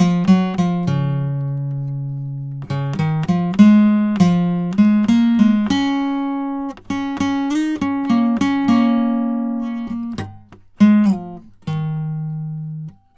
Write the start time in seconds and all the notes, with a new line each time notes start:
0.01 F3
0.29 F#3
0.59 F3
0.88 C#3
2.71 C#3
3.00 D#3
3.29 F3
3.60 G#3
4.21 F3
4.79 G#3
5.09 A#3
5.40 G#3
5.71 C#4
6.91 C#4
7.22 C#4
7.52 D#4
7.83 C#4
8.11 A#3
8.42 C#4
8.69 A#3
9.88 A#3
10.81 G#3
11.06 F3
11.68 D#3